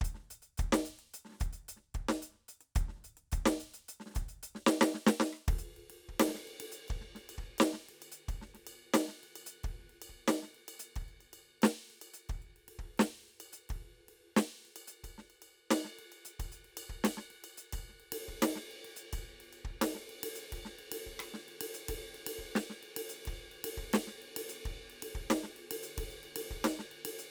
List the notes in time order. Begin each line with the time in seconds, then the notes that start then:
0.01 closed hi-hat, kick
0.14 snare
0.18 snare
0.23 snare
0.26 snare
0.30 closed hi-hat
0.42 closed hi-hat
0.57 closed hi-hat, kick
0.72 snare
0.85 closed hi-hat
0.99 closed hi-hat
1.14 closed hi-hat
1.25 snare
1.28 snare
1.31 snare
1.33 snare
1.37 closed hi-hat, kick, snare
1.52 closed hi-hat
1.68 closed hi-hat
1.76 snare
1.94 kick, closed hi-hat
2.08 snare, closed hi-hat
2.22 closed hi-hat
2.31 snare
2.34 snare
2.48 closed hi-hat
2.60 closed hi-hat
2.75 closed hi-hat, kick
2.88 snare
2.96 snare
3.01 closed hi-hat, snare
3.17 closed hi-hat
3.31 closed hi-hat, kick
3.45 snare
3.60 closed hi-hat
3.74 closed hi-hat
3.88 closed hi-hat
4.00 snare
4.06 snare
4.10 snare
4.14 closed hi-hat, kick, snare
4.17 snare
4.21 snare
4.28 closed hi-hat
4.43 closed hi-hat
4.55 snare
4.66 snare
4.81 snare
4.94 snare
5.06 snare
5.20 snare
5.32 cross-stick
5.48 kick, ride
5.58 open hi-hat
5.76 ride
5.90 ride
6.08 kick
6.19 snare, ride
6.28 snare
6.34 cross-stick, snare
6.47 ride
6.60 ride
6.72 closed hi-hat
6.88 kick, ride bell
7.01 snare
7.15 snare, ride
7.29 ride bell
7.38 kick
7.58 snare, ride bell
7.73 snare
7.89 ride
8.02 ride bell
8.11 closed hi-hat
8.28 kick, ride bell
8.41 snare
8.54 snare, ride
8.66 ride bell
8.94 snare, ride bell
9.08 snare
9.23 ride
9.35 ride bell
9.46 closed hi-hat
9.63 kick, ride
9.79 snare
9.89 snare, ride
10.01 ride bell
10.09 kick
10.27 snare, ride bell
10.42 snare
10.54 ride
10.68 ride bell
10.79 closed hi-hat
10.95 kick, ride bell
11.08 closed hi-hat
11.20 ride bell
11.33 ride bell
11.62 snare, ride bell
11.90 ride
12.01 ride bell
12.13 closed hi-hat
12.29 kick, ride bell
12.42 closed hi-hat
12.56 ride
12.68 ride
12.79 kick
12.97 snare, ride, floor tom
13.28 ride bell
13.40 ride bell
13.52 closed hi-hat
13.69 kick, snare, floor tom, ride
14.08 ride
14.36 snare, ride bell
14.65 ride
14.76 ride bell
14.87 closed hi-hat
15.03 kick, ride bell
15.18 snare
15.30 ride bell
15.42 ride bell
15.70 snare, ride bell
15.84 snare
15.99 ride
16.12 ride bell
16.25 closed hi-hat
16.39 kick, ride bell
16.52 closed hi-hat
16.64 ride
16.77 ride bell
16.89 kick
17.04 snare, ride bell
17.17 snare
17.30 ride
17.44 ride bell
17.57 closed hi-hat
17.72 kick, ride bell
17.89 snare
18.00 ride
18.12 ride
18.28 kick
18.42 snare, ride
18.55 snare
18.71 ride
18.84 ride
18.96 closed hi-hat
19.09 kick, closed hi-hat, ride bell
19.40 ride
19.52 ride bell
19.64 kick
19.81 snare, ride
19.95 snare
20.09 ride
20.23 ride
20.35 closed hi-hat
20.52 kick, ride
20.65 snare
20.79 ride
20.91 ride
21.06 kick
21.19 cross-stick, ride
21.34 snare
21.48 ride
21.61 ride
21.74 closed hi-hat
21.88 kick, ride
22.14 ride
22.26 ride
22.38 kick
22.55 snare, ride
22.69 snare
22.83 ride
22.96 ride
23.09 closed hi-hat
23.25 kick, ride
23.39 closed hi-hat
23.51 ride
23.64 ride
23.77 kick
23.93 snare, ride
24.07 snare
24.22 ride
24.36 ride
24.49 closed hi-hat
24.65 kick, ride
24.90 ride
25.02 ride
25.15 kick
25.30 snare, ride
25.43 snare
25.56 ride
25.71 ride
25.83 closed hi-hat
25.97 kick, ride
26.10 closed hi-hat
26.23 ride
26.36 ride
26.50 kick
26.64 snare, ride bell
26.79 snare
26.91 ride
27.05 ride
27.19 closed hi-hat